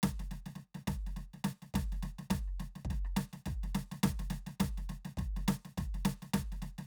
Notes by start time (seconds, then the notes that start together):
0.03 kick, snare
0.19 snare
0.31 snare
0.46 snare
0.55 snare
0.74 snare
0.87 kick, snare
1.06 snare
1.16 snare
1.33 snare
1.44 snare
1.62 snare
1.74 kick, snare
1.92 snare
2.03 snare
2.18 snare
2.30 kick, snare
2.48 cross-stick
2.60 snare
2.75 snare
2.85 kick
2.90 snare
3.05 cross-stick
3.16 snare
3.33 snare
3.46 kick, snare
3.63 snare
3.75 snare
3.91 snare
4.03 kick, snare
4.19 snare
4.30 snare
4.46 snare
4.60 kick, snare
4.77 snare
4.89 snare
5.05 snare
5.17 kick, snare
5.36 snare
5.48 snare
5.65 snare
5.77 kick, snare
5.94 snare
6.05 snare
6.22 snare
6.34 kick, snare
6.52 snare
6.78 snare